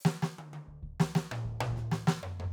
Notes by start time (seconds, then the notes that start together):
0.03 snare, hi-hat pedal
0.22 snare
0.38 high tom
0.53 high tom
0.68 kick
0.83 kick
1.00 snare
1.15 snare
1.31 mid tom
1.45 kick
1.60 mid tom
1.70 kick
1.76 snare
1.91 snare
2.07 snare
2.23 floor tom
2.40 floor tom
2.46 kick